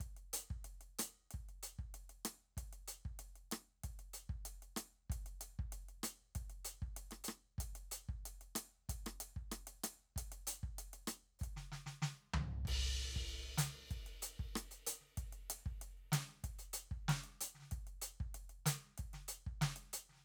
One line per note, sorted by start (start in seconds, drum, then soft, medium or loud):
0.01 kick soft
0.01 closed hi-hat soft
0.17 closed hi-hat soft
0.33 closed hi-hat loud
0.51 kick soft
0.65 closed hi-hat soft
0.81 closed hi-hat soft
0.99 closed hi-hat loud
0.99 cross-stick medium
1.31 kick soft
1.31 closed hi-hat soft
1.49 closed hi-hat soft
1.63 closed hi-hat medium
1.79 kick soft
1.94 closed hi-hat soft
2.10 closed hi-hat soft
2.25 cross-stick medium
2.25 closed hi-hat medium
2.57 kick soft
2.57 closed hi-hat soft
2.73 closed hi-hat soft
2.88 closed hi-hat medium
3.05 kick soft
3.19 closed hi-hat soft
3.36 closed hi-hat soft
3.52 cross-stick medium
3.52 closed hi-hat medium
3.84 kick soft
3.84 closed hi-hat soft
3.99 closed hi-hat soft
4.14 closed hi-hat medium
4.30 kick medium
4.46 closed hi-hat medium
4.62 closed hi-hat soft
4.77 cross-stick medium
4.77 closed hi-hat medium
5.10 kick medium
5.10 closed hi-hat soft
5.26 closed hi-hat soft
5.41 closed hi-hat medium
5.59 kick medium
5.72 closed hi-hat soft
5.89 closed hi-hat soft
6.04 closed hi-hat medium
6.04 cross-stick medium
6.35 kick medium
6.35 closed hi-hat soft
6.50 closed hi-hat soft
6.65 closed hi-hat medium
6.82 kick medium
6.97 closed hi-hat soft
7.11 cross-stick soft
7.11 closed hi-hat soft
7.24 closed hi-hat medium
7.29 cross-stick medium
7.58 kick medium
7.58 closed hi-hat medium
7.76 closed hi-hat soft
7.92 closed hi-hat medium
8.09 kick medium
8.26 closed hi-hat medium
8.41 closed hi-hat soft
8.56 cross-stick medium
8.56 closed hi-hat medium
8.89 kick medium
8.89 closed hi-hat medium
9.06 cross-stick medium
9.06 closed hi-hat soft
9.21 closed hi-hat medium
9.37 kick soft
9.52 cross-stick medium
9.52 closed hi-hat medium
9.67 closed hi-hat soft
9.84 cross-stick medium
9.84 closed hi-hat medium
10.16 kick medium
10.16 closed hi-hat medium
10.32 closed hi-hat soft
10.47 closed hi-hat medium
10.63 kick medium
10.79 closed hi-hat medium
10.94 closed hi-hat soft
11.08 open hi-hat medium
11.08 cross-stick medium
11.39 kick medium
11.39 hi-hat pedal soft
11.44 closed hi-hat soft
11.57 snare soft
11.72 snare soft
11.86 snare soft
12.02 snare medium
12.34 floor tom loud
12.65 kick medium
12.65 ride medium
13.16 kick medium
13.29 closed hi-hat soft
13.42 closed hi-hat soft
13.58 open hi-hat medium
13.58 snare medium
13.63 snare soft
13.88 kick medium
13.88 closed hi-hat soft
13.88 hi-hat pedal soft
14.07 closed hi-hat soft
14.22 closed hi-hat medium
14.40 kick medium
14.56 cross-stick medium
14.56 closed hi-hat medium
14.71 closed hi-hat soft
14.87 closed hi-hat loud
15.01 snare soft
15.18 kick medium
15.18 closed hi-hat soft
15.33 closed hi-hat soft
15.50 closed hi-hat medium
15.66 kick medium
15.82 closed hi-hat soft
15.98 closed hi-hat soft
16.12 snare medium
16.12 closed hi-hat medium
16.29 snare soft
16.35 snare soft
16.44 kick soft
16.44 closed hi-hat soft
16.59 closed hi-hat soft
16.74 closed hi-hat medium
16.91 kick medium
17.09 snare medium
17.09 closed hi-hat soft
17.24 closed hi-hat soft
17.41 closed hi-hat medium
17.55 snare soft
17.59 snare soft
17.62 snare soft
17.72 kick medium
17.72 closed hi-hat soft
17.87 closed hi-hat soft
18.02 closed hi-hat medium
18.20 kick medium
18.35 closed hi-hat soft
18.50 closed hi-hat soft
18.66 closed hi-hat loud
18.66 snare medium
18.85 snare soft
18.98 kick soft
18.98 closed hi-hat soft
19.14 snare soft
19.14 closed hi-hat soft
19.28 closed hi-hat medium
19.47 kick soft
19.62 snare medium
19.62 closed hi-hat soft
19.76 closed hi-hat soft
19.93 closed hi-hat medium
20.09 snare soft
20.12 snare soft
20.15 snare soft
20.18 snare soft